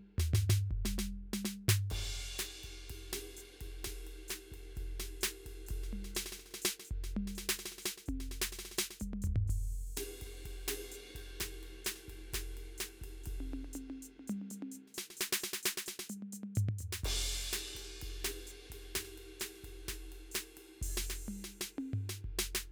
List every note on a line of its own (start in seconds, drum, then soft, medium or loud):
0.01 kick soft
0.19 snare medium
0.19 floor tom loud
0.34 snare medium
0.34 floor tom loud
0.50 snare medium
0.50 floor tom loud
0.71 kick soft
0.86 snare medium
0.86 mid tom medium
0.99 snare medium
0.99 mid tom medium
1.34 snare medium
1.34 mid tom loud
1.45 snare medium
1.45 mid tom medium
1.69 snare loud
1.69 floor tom loud
1.91 kick soft
1.91 ride medium
1.98 kick soft
2.05 snare soft
2.39 snare medium
2.39 hi-hat pedal medium
2.39 ride medium
2.64 kick soft
2.64 ride soft
2.70 kick soft
2.90 kick soft
2.90 ride medium
3.13 snare medium
3.13 ride medium
3.37 hi-hat pedal medium
3.37 ride soft
3.61 kick soft
3.61 ride medium
3.67 kick soft
3.85 kick soft
3.85 snare medium
3.85 hi-hat pedal soft
3.85 ride medium
3.93 kick soft
4.07 ride soft
4.29 snare medium
4.29 hi-hat pedal medium
4.29 ride medium
4.52 kick soft
4.52 ride soft
4.57 kick soft
4.76 kick soft
4.76 hi-hat pedal soft
4.76 ride soft
4.83 kick soft
5.00 snare medium
5.00 ride medium
5.22 snare loud
5.22 hi-hat pedal medium
5.22 ride medium
5.46 kick soft
5.46 ride soft
5.51 kick soft
5.51 snare soft
5.56 snare soft
5.67 hi-hat pedal medium
5.67 ride medium
5.71 kick soft
5.84 snare soft
5.94 mid tom medium
6.05 snare soft
6.16 snare loud
6.16 hi-hat pedal medium
6.26 snare medium
6.33 snare medium
6.40 snare soft
6.46 snare soft
6.51 snare soft
6.55 snare medium
6.63 snare loud
6.63 hi-hat pedal loud
6.80 snare soft
6.85 hi-hat pedal medium
6.92 kick soft
7.00 kick soft
7.04 snare soft
7.17 mid tom loud
7.28 snare soft
7.36 snare medium
7.36 hi-hat pedal medium
7.50 snare loud
7.59 snare medium
7.59 hi-hat pedal medium
7.66 snare medium
7.72 snare soft
7.79 snare soft
7.79 hi-hat pedal medium
7.86 snare loud
7.98 snare soft
8.06 kick soft
8.06 hi-hat pedal medium
8.06 high tom medium
8.15 kick soft
8.21 snare soft
8.32 snare soft
8.42 snare medium
8.53 snare soft
8.53 hi-hat pedal medium
8.59 snare medium
8.66 snare soft
8.72 snare soft
8.78 snare loud
8.78 hi-hat pedal loud
8.91 snare soft
9.00 kick soft
9.00 hi-hat pedal medium
9.00 mid tom medium
9.08 kick soft
9.14 mid tom medium
9.23 floor tom medium
9.23 hi-hat pedal medium
9.28 kick soft
9.37 floor tom loud
9.47 kick soft
9.47 hi-hat pedal soft
9.47 crash medium
9.47 floor tom soft
9.57 kick soft
9.97 snare medium
9.97 hi-hat pedal medium
9.97 ride loud
10.22 kick soft
10.22 ride medium
10.27 kick soft
10.27 snare soft
10.45 kick soft
10.45 hi-hat pedal soft
10.45 ride soft
10.69 snare medium
10.69 ride loud
10.92 hi-hat pedal medium
10.92 ride soft
11.16 kick soft
11.16 ride medium
11.21 kick soft
11.41 kick soft
11.41 snare medium
11.41 hi-hat pedal soft
11.41 ride medium
11.47 kick soft
11.64 ride soft
11.85 snare medium
11.85 hi-hat pedal medium
11.85 ride medium
11.96 snare soft
12.09 kick soft
12.09 ride soft
12.14 kick soft
12.33 kick soft
12.33 snare medium
12.33 hi-hat pedal soft
12.33 ride medium
12.39 kick soft
12.58 ride soft
12.78 snare medium
12.78 hi-hat pedal medium
12.78 ride medium
12.98 snare soft
13.02 kick soft
13.02 ride soft
13.07 kick soft
13.07 snare soft
13.24 kick soft
13.24 hi-hat pedal medium
13.24 ride medium
13.41 high tom medium
13.54 high tom medium
13.65 high tom medium
13.74 hi-hat pedal loud
13.74 high tom medium
13.91 high tom medium
14.03 hi-hat pedal medium
14.20 high tom soft
14.28 hi-hat pedal medium
14.28 mid tom loud
14.42 high tom soft
14.51 hi-hat pedal medium
14.51 mid tom medium
14.63 high tom medium
14.72 hi-hat pedal medium
14.77 mid tom soft
14.88 snare soft
14.95 snare medium
14.95 hi-hat pedal medium
15.11 snare soft
15.18 snare medium
15.18 hi-hat pedal medium
15.33 snare loud
15.40 hi-hat pedal medium
15.44 snare medium
15.54 snare medium
15.63 snare loud
15.63 hi-hat pedal loud
15.78 snare medium
15.87 snare medium
15.87 hi-hat pedal loud
16.00 snare medium
16.10 hi-hat pedal loud
16.10 mid tom medium
16.23 mid tom medium
16.33 hi-hat pedal loud
16.33 mid tom soft
16.44 mid tom medium
16.56 hi-hat pedal loud
16.56 floor tom loud
16.69 floor tom loud
16.79 floor tom medium
16.79 hi-hat pedal medium
16.93 snare medium
17.04 kick soft
17.04 hi-hat pedal soft
17.04 ride loud
17.52 snare medium
17.52 hi-hat pedal medium
17.52 ride medium
17.76 kick soft
17.76 ride medium
17.81 kick soft
18.01 kick soft
18.01 hi-hat pedal soft
18.01 ride medium
18.25 snare medium
18.25 ride medium
18.48 hi-hat pedal medium
18.48 ride soft
18.59 snare soft
18.71 kick soft
18.71 ride medium
18.76 kick soft
18.95 kick soft
18.95 snare medium
18.95 hi-hat pedal soft
18.95 ride medium
19.02 kick soft
19.02 snare soft
19.18 ride soft
19.40 snare medium
19.40 hi-hat pedal medium
19.40 ride medium
19.56 snare soft
19.64 kick soft
19.64 ride soft
19.69 kick soft
19.89 kick soft
19.89 snare medium
19.89 hi-hat pedal soft
19.89 ride medium
19.94 kick soft
20.13 ride soft
20.32 snare medium
20.32 hi-hat pedal medium
20.32 ride medium
20.46 snare soft
20.58 ride medium
20.68 snare soft
20.82 kick soft
20.82 hi-hat pedal loud
20.89 kick soft
20.98 snare medium
21.11 snare medium
21.29 mid tom medium
21.45 snare medium
21.62 snare medium
21.79 high tom medium
21.94 floor tom medium
22.10 snare medium
22.25 kick soft
22.30 kick soft
22.39 snare loud
22.56 snare medium